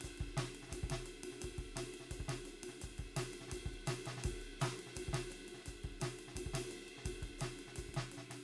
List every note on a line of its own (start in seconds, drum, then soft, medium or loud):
0.01 kick soft
0.01 hi-hat pedal medium
0.01 ride medium
0.18 kick medium
0.18 ride medium
0.37 snare medium
0.37 hi-hat pedal medium
0.37 ride loud
0.55 ride medium
0.62 snare soft
0.69 kick soft
0.69 snare soft
0.69 hi-hat pedal medium
0.73 ride medium
0.83 kick medium
0.90 snare medium
0.90 ride loud
1.05 hi-hat pedal medium
1.05 ride medium
1.24 ride medium
1.32 snare soft
1.41 kick soft
1.41 hi-hat pedal medium
1.41 ride medium
1.58 kick soft
1.58 ride medium
1.76 snare medium
1.76 hi-hat pedal medium
1.76 ride loud
1.94 ride medium
2.00 snare soft
2.11 kick soft
2.11 hi-hat pedal medium
2.11 ride medium
2.20 kick soft
2.28 snare medium
2.28 ride loud
2.45 hi-hat pedal medium
2.45 ride medium
2.63 ride medium
2.68 snare soft
2.81 kick soft
2.81 hi-hat pedal medium
2.81 ride medium
2.98 kick soft
2.98 ride medium
3.16 snare medium
3.16 hi-hat pedal medium
3.16 ride loud
3.33 ride medium
3.41 snare soft
3.48 snare soft
3.48 ride loud
3.52 kick soft
3.52 hi-hat pedal medium
3.66 kick soft
3.74 ride soft
3.86 snare medium
3.86 hi-hat pedal medium
3.86 ride loud
4.06 snare medium
4.06 ride medium
4.17 snare soft
4.24 kick medium
4.24 hi-hat pedal medium
4.24 ride loud
4.42 ride soft
4.60 snare medium
4.60 hi-hat pedal medium
4.60 ride loud
4.79 ride medium
4.86 snare soft
4.95 kick soft
4.95 hi-hat pedal medium
4.95 ride loud
5.08 kick soft
5.13 snare medium
5.13 ride loud
5.30 hi-hat pedal medium
5.30 ride medium
5.48 ride medium
5.54 snare soft
5.59 snare soft
5.66 kick soft
5.66 hi-hat pedal medium
5.66 ride medium
5.84 kick soft
5.84 ride soft
6.00 snare medium
6.00 hi-hat pedal medium
6.00 ride loud
6.19 ride medium
6.28 snare soft
6.34 kick soft
6.34 snare soft
6.34 hi-hat pedal medium
6.34 ride loud
6.46 kick soft
6.54 snare medium
6.54 ride loud
6.70 hi-hat pedal medium
6.70 ride medium
6.88 ride medium
6.98 snare soft
7.05 kick soft
7.05 hi-hat pedal medium
7.05 ride loud
7.22 kick soft
7.22 ride medium
7.38 snare medium
7.38 hi-hat pedal medium
7.38 ride loud
7.59 ride medium
7.67 snare soft
7.76 kick soft
7.76 hi-hat pedal medium
7.76 ride medium
7.89 kick soft
7.94 snare medium
7.94 ride medium
8.12 hi-hat pedal medium
8.12 ride medium
8.17 snare soft
8.30 snare soft
8.30 ride medium